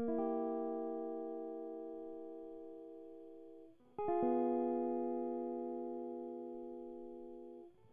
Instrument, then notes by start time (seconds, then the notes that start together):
electric guitar
0.00 A#3
0.08 E4
0.19 G4
4.03 G#4
4.09 F4
4.23 B3